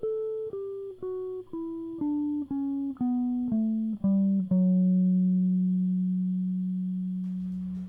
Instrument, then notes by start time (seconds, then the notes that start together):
electric guitar
0.03 A4
0.53 G4
1.03 F#4
1.54 E4
2.02 D4
2.51 C#4
3.01 B3
3.52 A3
4.05 G3
4.52 F#3